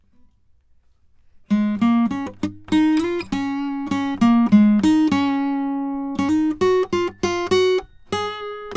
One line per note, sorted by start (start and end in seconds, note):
1.51 1.79 G#3
1.82 2.10 A#3
2.12 2.32 C#4
2.44 2.52 D4
2.73 3.04 D#4
3.05 3.25 F4
3.33 3.91 C#4
3.92 4.20 C#4
4.22 4.50 A#3
4.53 4.83 G#3
4.84 5.10 D#4
5.13 6.20 C#4
6.20 6.29 C#4
6.29 6.57 D#4
6.62 6.88 F#4
6.93 7.13 F4
7.24 7.48 F4
7.52 7.85 F#4
8.13 8.76 G#4